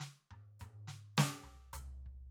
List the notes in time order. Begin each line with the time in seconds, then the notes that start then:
0.04 snare
0.31 high tom
0.59 hi-hat pedal, high tom
0.87 snare
1.17 snare, hi-hat pedal
1.43 floor tom
1.73 floor tom, hi-hat pedal
2.06 kick